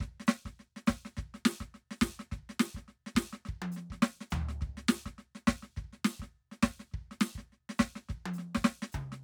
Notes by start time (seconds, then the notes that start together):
0.01 kick, snare
0.08 kick
0.20 snare
0.27 snare, hi-hat pedal
0.46 kick, snare
0.60 snare
0.77 snare
0.87 kick, snare, hi-hat pedal
1.06 snare
1.17 kick, snare
1.25 kick
1.35 snare
1.46 snare, hi-hat pedal
1.61 kick, snare
1.75 snare
1.91 snare
2.02 kick, snare, hi-hat pedal
2.11 kick
2.20 snare
2.32 kick, snare
2.39 kick
2.50 snare
2.60 snare, hi-hat pedal
2.75 kick, snare
2.89 snare
3.07 snare
3.16 kick, snare, hi-hat pedal
3.33 snare
3.46 kick, snare
3.55 kick
3.59 kick, high tom
3.72 hi-hat pedal
3.77 snare
3.91 kick, snare
4.03 snare
4.21 snare
4.31 kick, floor tom, hi-hat pedal
4.39 kick
4.42 kick
4.49 snare
4.62 kick, snare
4.69 kick
4.78 snare
4.89 snare, hi-hat pedal
5.06 kick, snare
5.19 snare
5.36 snare
5.48 kick, snare, hi-hat pedal
5.63 snare
5.77 kick, snare
5.85 kick
5.93 snare
6.05 snare, hi-hat pedal
6.20 kick, snare
6.52 snare
6.63 kick, snare, hi-hat pedal
6.70 kick
6.80 snare
6.92 kick, snare
7.01 kick
7.12 snare
7.21 snare, hi-hat pedal
7.36 kick, snare
7.53 snare
7.70 snare
7.79 kick, snare, hi-hat pedal
7.96 snare
8.09 kick, snare
8.17 kick
8.26 high tom
8.34 hi-hat pedal
8.39 snare
8.55 kick, snare
8.63 kick, snare
8.83 snare
8.93 kick, hi-hat pedal, mid tom
9.01 kick
9.04 kick
9.13 snare